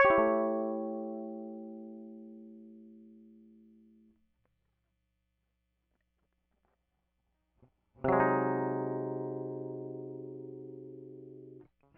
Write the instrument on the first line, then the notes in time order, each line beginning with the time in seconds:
electric guitar
0.00 C#5
0.05 G4
0.11 E4
0.19 A3
7.64 B2
8.06 C3 F#3
8.14 G#3
8.21 D#4